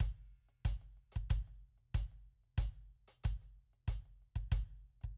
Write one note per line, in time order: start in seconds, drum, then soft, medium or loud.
0.01 closed hi-hat medium
0.01 kick soft
0.19 closed hi-hat soft
0.49 closed hi-hat soft
0.66 closed hi-hat loud
0.66 kick soft
0.82 closed hi-hat soft
0.98 closed hi-hat soft
1.13 closed hi-hat medium
1.13 kick soft
1.31 closed hi-hat medium
1.31 kick medium
1.48 closed hi-hat soft
1.78 closed hi-hat soft
1.95 closed hi-hat medium
1.95 kick soft
2.12 closed hi-hat soft
2.44 closed hi-hat soft
2.58 closed hi-hat loud
2.58 kick soft
2.76 closed hi-hat soft
3.08 closed hi-hat medium
3.24 closed hi-hat medium
3.24 kick soft
3.42 closed hi-hat soft
3.59 closed hi-hat soft
3.74 closed hi-hat soft
3.88 closed hi-hat medium
3.88 kick soft
4.06 closed hi-hat soft
4.23 closed hi-hat soft
4.36 closed hi-hat soft
4.36 kick soft
4.52 closed hi-hat medium
4.52 kick medium
4.70 closed hi-hat soft
5.02 kick soft
5.02 closed hi-hat soft